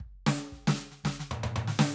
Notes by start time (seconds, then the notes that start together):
0.00 kick
0.26 snare
0.37 snare
0.52 kick, snare
0.67 snare
0.79 snare
0.91 snare
1.04 kick, snare
1.20 snare
1.31 high tom
1.43 high tom
1.56 high tom
1.68 snare
1.79 snare